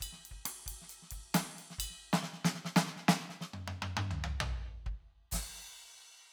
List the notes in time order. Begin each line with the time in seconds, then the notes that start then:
0.01 kick, hi-hat pedal, ride bell
0.06 kick
0.13 snare
0.19 snare
0.26 ride
0.32 kick
0.46 cross-stick, hi-hat pedal, ride
0.67 kick, ride
0.72 kick
0.82 snare
0.90 hi-hat pedal, ride
1.03 snare
1.11 kick, ride
1.18 kick
1.35 snare, hi-hat pedal, ride
1.59 ride
1.71 snare
1.79 kick, hi-hat pedal, ride bell
1.85 kick
1.91 snare
1.95 hi-hat pedal
2.14 snare
2.23 snare
2.33 snare
2.45 snare
2.55 snare
2.65 snare
2.77 snare
2.87 snare
2.97 snare
3.09 snare
3.21 snare
3.30 snare
3.41 snare
3.54 high tom
3.68 high tom
3.83 high tom
3.97 high tom
4.11 mid tom
4.25 mid tom
4.41 floor tom
4.87 kick
4.94 kick
5.01 kick
5.32 kick, snare, hi-hat pedal, crash
5.40 kick
5.47 kick